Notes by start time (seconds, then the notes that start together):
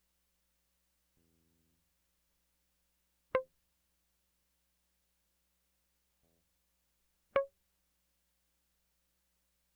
3.35 C5
7.36 C#5